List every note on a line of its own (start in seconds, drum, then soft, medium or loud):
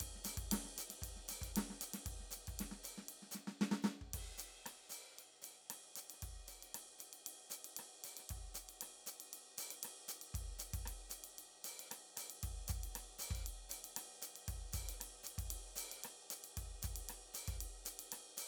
0.01 kick soft
0.01 ride medium
0.16 snare soft
0.25 snare soft
0.25 hi-hat pedal medium
0.25 ride medium
0.38 kick soft
0.38 ride medium
0.52 snare medium
0.52 ride loud
0.65 snare soft
0.78 hi-hat pedal medium
0.78 ride medium
0.90 snare soft
0.90 ride medium
1.02 kick soft
1.02 ride medium
1.17 snare soft
1.29 snare soft
1.29 hi-hat pedal medium
1.29 ride medium
1.42 kick soft
1.42 ride medium
1.57 snare medium
1.57 ride medium
1.71 snare soft
1.82 hi-hat pedal medium
1.82 ride medium
1.94 snare soft
1.94 ride medium
2.06 kick soft
2.06 ride medium
2.20 snare soft
2.31 hi-hat pedal medium
2.31 ride medium
2.37 snare soft
2.48 kick soft
2.48 ride soft
2.60 snare soft
2.60 ride medium
2.72 snare soft
2.84 hi-hat pedal medium
2.84 ride medium
2.98 snare soft
3.09 ride medium
3.23 snare soft
3.32 snare soft
3.32 hi-hat pedal medium
3.48 snare soft
3.62 snare medium
3.72 snare medium
3.83 snare medium
3.83 hi-hat pedal soft
4.02 kick soft
4.14 kick soft
4.14 ride medium
4.14 crash soft
4.38 hi-hat pedal medium
4.38 ride medium
4.66 cross-stick medium
4.66 ride medium
4.90 hi-hat pedal medium
4.90 ride medium
5.19 ride soft
5.42 hi-hat pedal soft
5.42 ride medium
5.71 cross-stick soft
5.71 ride medium
5.96 hi-hat pedal medium
5.96 ride medium
6.10 cross-stick soft
6.10 ride medium
6.23 kick soft
6.23 ride medium
6.48 hi-hat pedal soft
6.48 ride soft
6.63 ride soft
6.75 cross-stick soft
6.75 ride medium
6.99 hi-hat pedal soft
6.99 ride medium
7.14 ride soft
7.27 ride medium
7.51 hi-hat pedal medium
7.51 ride medium
7.65 ride medium
7.77 cross-stick soft
7.77 ride medium
8.05 hi-hat pedal medium
8.05 ride medium
8.17 cross-stick soft
8.17 ride medium
8.30 kick soft
8.30 ride medium
8.55 hi-hat pedal medium
8.55 ride medium
8.70 ride soft
8.82 cross-stick soft
8.82 ride medium
9.07 hi-hat pedal medium
9.07 ride medium
9.21 ride medium
9.34 ride medium
9.59 hi-hat pedal medium
9.59 ride medium
9.71 ride medium
9.84 cross-stick soft
9.84 ride medium
10.09 hi-hat pedal loud
10.09 ride medium
10.22 ride medium
10.35 kick soft
10.35 ride medium
10.59 hi-hat pedal medium
10.59 ride medium
10.74 kick soft
10.74 ride medium
10.86 cross-stick soft
10.86 ride medium
11.10 hi-hat pedal medium
11.10 ride medium
11.25 ride medium
11.39 ride medium
11.65 hi-hat pedal medium
11.65 ride medium
11.80 ride medium
11.92 cross-stick soft
11.92 ride medium
12.17 cross-stick soft
12.17 hi-hat pedal medium
12.17 ride medium
12.30 ride medium
12.44 kick soft
12.44 ride medium
12.68 kick soft
12.68 hi-hat pedal medium
12.68 ride medium
12.84 ride medium
12.96 cross-stick soft
12.96 ride medium
13.19 hi-hat pedal loud
13.19 ride medium
13.31 kick soft
13.36 ride soft
13.47 ride medium
13.70 hi-hat pedal medium
13.70 ride medium
13.85 ride medium
13.97 cross-stick soft
13.97 ride medium
14.23 hi-hat pedal medium
14.23 ride medium
14.36 ride soft
14.49 kick soft
14.49 ride medium
14.73 kick soft
14.73 hi-hat pedal medium
14.73 ride medium
14.89 ride medium
15.01 cross-stick soft
15.01 ride medium
15.24 hi-hat pedal medium
15.24 ride medium
15.39 kick soft
15.39 ride medium
15.51 ride medium
15.76 hi-hat pedal medium
15.76 ride medium
15.92 ride medium
16.04 cross-stick soft
16.04 ride medium
16.31 hi-hat pedal medium
16.31 ride medium
16.45 ride medium
16.58 kick soft
16.58 ride medium
16.83 kick soft
16.83 hi-hat pedal medium
16.83 ride medium
16.96 ride medium
17.09 cross-stick soft
17.09 ride medium
17.35 hi-hat pedal medium
17.35 ride medium
17.48 kick soft
17.48 ride medium
17.61 ride medium
17.86 hi-hat pedal medium
17.86 ride medium
18.00 ride medium
18.13 cross-stick soft
18.13 ride medium
18.38 hi-hat pedal medium
18.38 ride medium